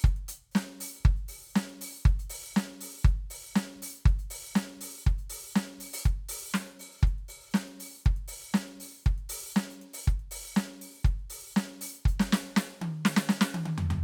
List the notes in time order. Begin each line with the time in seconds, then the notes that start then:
0.01 kick, hi-hat pedal
0.06 closed hi-hat
0.16 closed hi-hat
0.28 closed hi-hat
0.44 open hi-hat
0.51 snare, hi-hat pedal
0.66 closed hi-hat
0.80 open hi-hat
0.95 open hi-hat
1.00 kick, hi-hat pedal
1.05 kick
1.16 closed hi-hat
1.28 open hi-hat
1.43 open hi-hat
1.53 snare, hi-hat pedal
1.69 closed hi-hat
1.81 open hi-hat
1.95 open hi-hat
2.03 kick, hi-hat pedal
2.08 closed hi-hat
2.19 closed hi-hat
2.30 open hi-hat
2.44 open hi-hat
2.54 snare, hi-hat pedal
2.70 kick, closed hi-hat
2.81 open hi-hat
2.95 open hi-hat
3.02 kick, hi-hat pedal
3.08 closed hi-hat
3.17 closed hi-hat
3.30 open hi-hat
3.45 open hi-hat
3.55 snare, hi-hat pedal
3.71 closed hi-hat
3.76 kick
3.82 open hi-hat
3.97 hi-hat pedal, open hi-hat
4.06 kick, closed hi-hat
4.19 closed hi-hat
4.30 open hi-hat
4.44 open hi-hat
4.54 snare, hi-hat pedal
4.69 closed hi-hat
4.77 kick
4.81 open hi-hat
4.94 open hi-hat
5.02 hi-hat pedal
5.06 kick, closed hi-hat
5.18 closed hi-hat
5.30 open hi-hat
5.43 open hi-hat
5.54 snare, hi-hat pedal
5.67 closed hi-hat
5.78 open hi-hat, kick
5.93 open hi-hat
6.00 hi-hat pedal
6.05 kick, closed hi-hat
6.16 closed hi-hat
6.29 open hi-hat
6.43 open hi-hat
6.52 snare, hi-hat pedal
6.67 closed hi-hat
6.79 open hi-hat
6.94 open hi-hat
7.00 kick, hi-hat pedal
7.07 closed hi-hat
7.18 closed hi-hat
7.28 open hi-hat
7.44 open hi-hat
7.53 snare, hi-hat pedal
7.68 closed hi-hat
7.80 open hi-hat
7.95 open hi-hat
8.01 hi-hat pedal
8.05 kick, closed hi-hat
8.16 closed hi-hat
8.28 open hi-hat
8.42 open hi-hat
8.52 snare, hi-hat pedal
8.68 closed hi-hat
8.76 kick
8.80 open hi-hat
8.94 open hi-hat
9.02 kick, closed hi-hat, hi-hat pedal
9.18 closed hi-hat
9.29 open hi-hat
9.43 open hi-hat
9.54 snare, hi-hat pedal
9.70 closed hi-hat
9.81 closed hi-hat
9.94 open hi-hat
10.04 kick, closed hi-hat, hi-hat pedal
10.19 closed hi-hat
10.31 open hi-hat
10.47 open hi-hat
10.55 snare, hi-hat pedal
10.70 closed hi-hat
10.81 open hi-hat
10.94 open hi-hat
11.01 kick, hi-hat pedal
11.06 closed hi-hat
11.19 closed hi-hat
11.30 open hi-hat
11.44 open hi-hat
11.53 snare, hi-hat pedal
11.69 closed hi-hat
11.81 open hi-hat
11.95 open hi-hat
12.03 kick, hi-hat pedal
12.08 closed hi-hat
12.20 snare
12.32 snare
12.56 snare
12.82 high tom
13.05 snare
13.17 snare
13.29 snare
13.41 snare
13.54 high tom
13.66 high tom
13.78 floor tom
13.90 floor tom